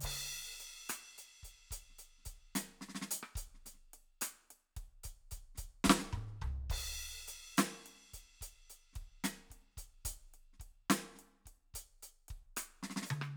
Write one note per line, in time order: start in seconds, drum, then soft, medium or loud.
0.01 kick soft
0.01 hi-hat pedal medium
0.01 crash loud
0.31 closed hi-hat soft
0.60 closed hi-hat soft
0.88 closed hi-hat medium
0.88 cross-stick medium
0.88 hi-hat pedal soft
1.18 closed hi-hat soft
1.43 closed hi-hat soft
1.43 kick soft
1.71 closed hi-hat medium
1.71 kick soft
1.90 snare soft
1.99 closed hi-hat soft
2.18 snare soft
2.24 closed hi-hat soft
2.24 kick soft
2.24 snare soft
2.55 closed hi-hat loud
2.55 snare medium
2.81 snare soft
2.89 snare soft
2.95 snare medium
3.02 snare medium
3.11 closed hi-hat loud
3.23 cross-stick medium
3.35 closed hi-hat medium
3.35 kick soft
3.54 snare soft
3.66 closed hi-hat medium
3.66 snare soft
3.74 snare soft
3.93 closed hi-hat soft
4.21 closed hi-hat loud
4.21 cross-stick medium
4.51 closed hi-hat soft
4.77 kick soft
4.77 closed hi-hat soft
5.04 closed hi-hat medium
5.04 kick soft
5.31 closed hi-hat medium
5.31 kick soft
5.37 kick soft
5.55 closed hi-hat medium
5.55 kick soft
5.55 snare soft
5.64 kick soft
5.84 kick soft
5.84 snare loud
5.90 snare loud
5.99 snare soft
6.13 kick soft
6.13 mid tom medium
6.19 kick soft
6.27 snare soft
6.41 kick soft
6.41 floor tom medium
6.47 kick soft
6.70 kick soft
6.70 crash medium
6.77 kick soft
7.28 closed hi-hat medium
7.57 closed hi-hat loud
7.57 snare loud
7.86 closed hi-hat soft
8.14 closed hi-hat soft
8.14 kick soft
8.41 closed hi-hat medium
8.41 kick soft
8.70 closed hi-hat soft
8.93 kick soft
8.93 snare soft
8.93 closed hi-hat soft
9.01 kick soft
9.24 closed hi-hat medium
9.24 snare medium
9.50 kick soft
9.50 closed hi-hat soft
9.71 snare soft
9.77 closed hi-hat soft
9.77 kick soft
10.05 closed hi-hat medium
10.05 kick soft
10.10 kick soft
10.34 closed hi-hat soft
10.53 snare soft
10.58 kick soft
10.58 snare soft
10.58 closed hi-hat soft
10.90 closed hi-hat medium
10.90 snare loud
11.15 snare soft
11.15 closed hi-hat soft
11.46 kick soft
11.46 closed hi-hat soft
11.74 closed hi-hat medium
11.74 kick soft
12.03 closed hi-hat soft
12.28 kick soft
12.28 closed hi-hat soft
12.57 closed hi-hat loud
12.57 cross-stick medium
12.83 snare medium
12.90 snare soft
12.96 snare medium
13.02 snare medium
13.02 hi-hat pedal medium
13.10 high tom loud
13.22 cross-stick medium